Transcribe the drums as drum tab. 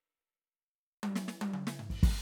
Crash     |---------------x|x---------------|
Snare     |---------oo--o--|----------------|
High tom  |--------o--o----|----------------|
Mid tom   |------------o---|----------------|
Floor tom |--------------o-|----------------|
Kick      |---------------o|o---------------|